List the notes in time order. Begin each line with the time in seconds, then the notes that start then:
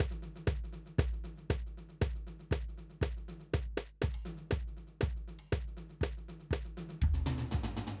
0.00 kick, high tom
0.11 high tom
0.22 high tom
0.36 high tom
0.47 kick, high tom
0.64 high tom
0.73 high tom
0.86 high tom
0.99 kick, high tom
1.13 high tom
1.24 high tom
1.38 high tom
1.50 kick, high tom
1.67 high tom
1.77 high tom
1.89 high tom
2.02 kick, high tom
2.15 high tom
2.27 high tom
2.39 high tom
2.51 kick, high tom
2.69 high tom
2.78 high tom
2.90 high tom
3.01 kick, high tom
3.17 high tom
3.28 high tom
3.40 high tom
3.54 kick, high tom
3.77 high tom
4.02 kick, high tom
4.14 high tom
4.25 high tom
4.37 high tom
4.51 kick, high tom
4.67 high tom
4.77 high tom
4.87 high tom
5.01 kick, high tom
5.16 high tom
5.28 high tom
5.39 high tom
5.52 kick, high tom
5.67 high tom
5.77 high tom
5.89 high tom
6.01 kick, high tom
6.17 high tom
6.28 high tom
6.40 high tom
6.51 kick, high tom
6.65 high tom
6.77 high tom
6.89 high tom
7.02 kick, mid tom
7.14 mid tom
7.26 mid tom
7.38 mid tom
7.51 kick, floor tom
7.63 floor tom
7.77 floor tom
7.87 floor tom